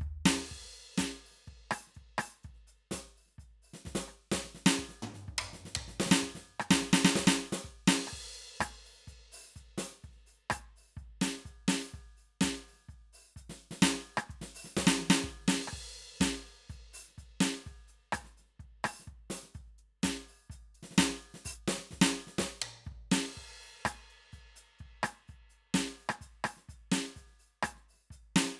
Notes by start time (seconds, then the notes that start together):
0.00 kick, hi-hat pedal
0.07 kick
0.26 snare, crash
0.42 snare
0.49 open hi-hat, kick, snare
0.57 snare
0.61 snare
0.63 snare
0.73 open hi-hat
0.98 open hi-hat, kick, snare
1.25 open hi-hat
1.32 snare
1.37 snare
1.48 kick, closed hi-hat
1.72 open hi-hat, cross-stick
1.88 snare
1.95 kick, open hi-hat
2.19 open hi-hat, cross-stick
2.44 kick, open hi-hat
2.54 snare
2.68 open hi-hat
2.92 open hi-hat, kick, snare
3.16 open hi-hat
3.27 snare
3.39 closed hi-hat, kick
3.62 open hi-hat
3.74 snare
3.86 kick, snare
4.09 cross-stick
4.32 kick, snare, hi-hat pedal
4.45 snare
4.55 snare
4.67 snare
4.78 kick, snare, hi-hat pedal
4.89 snare
5.03 floor tom
5.14 snare
5.27 kick, hi-hat pedal
5.39 floor tom
5.45 floor tom
5.54 snare
5.66 snare
5.76 kick, hi-hat pedal, mid tom
5.89 snare
6.00 snare
6.07 snare
6.12 snare
6.23 kick
6.27 snare
6.36 snare
6.60 cross-stick
6.71 kick, snare, hi-hat pedal
6.82 snare
6.94 snare
7.05 snare
7.16 kick, snare, hi-hat pedal
7.28 snare
7.53 snare
7.65 kick
7.88 snare, crash
8.08 open hi-hat, cross-stick
8.13 kick
8.34 open hi-hat
8.61 closed hi-hat, kick, cross-stick
8.85 open hi-hat
9.08 closed hi-hat, kick
9.32 open hi-hat
9.56 closed hi-hat, kick
9.78 open hi-hat, snare
9.93 snare
10.03 closed hi-hat, kick
10.11 snare
10.15 snare
10.21 snare
10.27 open hi-hat
10.51 open hi-hat, kick, cross-stick
10.76 open hi-hat
10.97 closed hi-hat, kick
11.22 open hi-hat, snare
11.38 snare
11.46 closed hi-hat, kick
11.69 open hi-hat, snare
11.93 open hi-hat, kick, snare
12.00 snare
12.17 open hi-hat
12.42 open hi-hat, kick, snare
12.54 snare
12.67 open hi-hat
12.74 snare
12.80 snare
12.83 snare
12.89 closed hi-hat, kick
13.13 open hi-hat
13.37 closed hi-hat, kick
13.50 snare
13.61 open hi-hat
13.72 snare
13.83 kick, snare
13.94 snare
14.07 open hi-hat
14.18 cross-stick
14.28 kick, closed hi-hat, hi-hat pedal
14.42 snare
14.55 open hi-hat
14.65 snare
14.77 kick, snare
14.88 snare
14.99 high tom
15.11 snare
15.24 kick
15.48 snare, crash
15.58 snare
15.68 open hi-hat, cross-stick
15.73 kick
15.94 open hi-hat
16.21 closed hi-hat, kick, snare
16.46 open hi-hat
16.69 open hi-hat, kick
16.94 open hi-hat
17.09 snare
17.18 closed hi-hat, kick
17.41 open hi-hat, snare
17.54 snare
17.65 open hi-hat, kick, snare
17.88 open hi-hat
18.13 open hi-hat, kick, cross-stick
18.25 snare
18.37 open hi-hat, snare
18.44 snare
18.47 snare
18.60 kick, closed hi-hat
18.84 open hi-hat, cross-stick
19.00 snare
19.07 kick, closed hi-hat
19.31 open hi-hat, snare
19.44 snare
19.54 closed hi-hat, kick
19.59 snare
19.66 snare
19.79 open hi-hat
20.03 open hi-hat, kick, snare
20.27 open hi-hat
20.50 closed hi-hat, kick
20.75 open hi-hat
20.83 snare
20.92 snare
20.99 kick, snare
21.10 snare
21.23 open hi-hat
21.35 snare
21.45 open hi-hat, kick
21.68 snare
21.79 snare
21.91 kick, snare
22.02 snare
22.28 snare
22.39 kick, snare, hi-hat pedal
22.53 snare
22.62 mid tom
22.85 kick, hi-hat pedal
22.92 kick
23.12 snare, crash
23.38 kick
23.61 open hi-hat
23.86 closed hi-hat, kick, cross-stick
24.10 open hi-hat
24.32 open hi-hat, kick
24.56 open hi-hat
24.79 kick, closed hi-hat
25.04 open hi-hat, cross-stick
25.28 open hi-hat, kick
25.50 open hi-hat
25.75 open hi-hat, kick, snare
25.85 snare
25.98 open hi-hat
26.10 cross-stick
26.22 closed hi-hat, kick
26.45 open hi-hat, cross-stick
26.57 snare
26.69 closed hi-hat, kick
26.92 open hi-hat, snare
27.02 snare
27.16 open hi-hat, kick
27.28 snare
27.31 snare
27.39 open hi-hat
27.63 open hi-hat, kick, cross-stick
27.76 snare
27.89 open hi-hat
27.94 snare
28.11 closed hi-hat, kick
28.37 open hi-hat, snare
28.44 snare